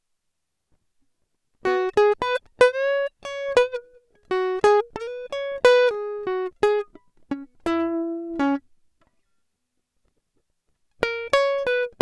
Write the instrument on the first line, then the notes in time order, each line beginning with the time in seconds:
acoustic guitar
1.66 B3 F#4
1.98 G#4
2.22 B4
2.62 B4
2.76 C#5
3.26 C#5
3.57 B4
3.76 B4
4.32 F#4
4.65 G#4
4.96 B4
5.33 C#5
5.65 B4
5.88 G#4
6.28 F#4
6.63 G#4
7.32 C#4
7.67 E4
8.40 C#4
11.03 A#4
11.34 C#5
11.67 B4